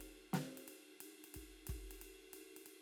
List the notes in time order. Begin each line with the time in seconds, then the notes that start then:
0.01 ride
0.33 snare, ride
0.58 ride
0.68 ride
1.01 ride
1.24 ride
1.36 kick
1.67 kick, ride
1.91 ride
2.02 ride
2.33 ride
2.57 ride
2.66 ride